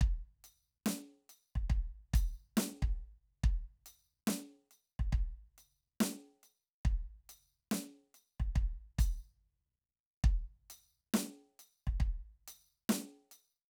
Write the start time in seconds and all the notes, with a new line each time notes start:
0.01 kick, ride
0.44 closed hi-hat
0.86 snare
1.29 closed hi-hat
1.56 kick
1.70 kick
2.14 kick, closed hi-hat
2.57 snare
2.82 kick
3.44 kick, snare, crash
3.86 closed hi-hat
4.27 snare
4.71 closed hi-hat
4.99 kick
5.13 kick, crash
5.58 closed hi-hat
6.01 snare
6.43 closed hi-hat
6.85 kick
7.29 closed hi-hat
7.71 snare
8.14 closed hi-hat
8.40 kick
8.56 kick
8.99 closed hi-hat, kick
10.24 kick
10.70 closed hi-hat
11.14 snare
11.59 closed hi-hat
11.87 kick
12.00 kick
12.48 closed hi-hat
12.89 snare
13.31 closed hi-hat